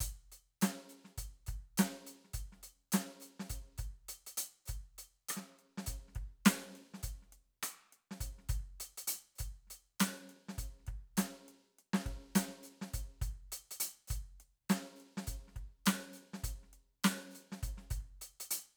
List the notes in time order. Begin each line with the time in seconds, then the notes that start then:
0.00 closed hi-hat, kick
0.32 closed hi-hat
0.61 closed hi-hat, snare
0.89 open hi-hat, hi-hat pedal
1.04 snare
1.18 closed hi-hat, kick
1.46 closed hi-hat, kick
1.77 closed hi-hat, snare
1.90 snare
2.06 closed hi-hat
2.24 snare
2.33 closed hi-hat, kick
2.52 snare
2.63 closed hi-hat
2.92 closed hi-hat, snare
3.20 closed hi-hat, hi-hat pedal
3.39 snare
3.50 closed hi-hat, kick
3.78 closed hi-hat, kick
4.08 closed hi-hat
4.26 closed hi-hat
4.37 closed hi-hat
4.65 closed hi-hat, kick, hi-hat pedal
4.98 closed hi-hat
5.29 closed hi-hat, cross-stick
5.37 snare
5.59 closed hi-hat
5.77 snare
5.86 closed hi-hat, kick
6.08 snare
6.15 kick, closed hi-hat
6.45 closed hi-hat, snare
6.75 closed hi-hat
6.94 snare
7.03 closed hi-hat, kick
7.22 snare
7.32 closed hi-hat
7.63 closed hi-hat, cross-stick
7.92 closed hi-hat
8.11 snare
8.20 closed hi-hat, kick
8.38 snare
8.49 closed hi-hat, kick
8.59 kick
8.80 closed hi-hat
8.97 closed hi-hat
9.07 closed hi-hat
9.35 closed hi-hat, hi-hat pedal
9.40 kick
9.67 closed hi-hat, snare
10.00 closed hi-hat, snare
10.29 closed hi-hat
10.48 snare
10.58 closed hi-hat, kick
10.79 snare
10.83 snare, closed hi-hat
10.88 kick
11.17 closed hi-hat, snare
11.48 closed hi-hat
11.79 closed hi-hat
11.93 snare
12.06 kick, closed hi-hat
12.11 kick
12.35 closed hi-hat, snare
12.48 snare
12.63 closed hi-hat, hi-hat pedal
12.81 snare
12.94 closed hi-hat, kick
13.21 closed hi-hat, kick
13.30 kick
13.52 closed hi-hat
13.71 closed hi-hat
13.80 closed hi-hat
14.07 closed hi-hat, kick, hi-hat pedal
14.40 closed hi-hat
14.69 closed hi-hat, snare
14.96 hi-hat pedal
15.00 closed hi-hat
15.17 snare
15.27 closed hi-hat, kick
15.48 snare
15.53 kick, snare, closed hi-hat
15.86 closed hi-hat, snare
16.13 closed hi-hat, hi-hat pedal
16.33 snare
16.44 closed hi-hat, kick
16.63 snare
16.73 closed hi-hat
17.04 closed hi-hat, snare
17.17 snare
17.31 hi-hat pedal
17.35 closed hi-hat
17.52 snare
17.63 closed hi-hat, kick
17.68 kick
17.77 snare
17.90 closed hi-hat, kick
17.97 kick
18.00 kick
18.21 closed hi-hat
18.40 closed hi-hat
18.51 closed hi-hat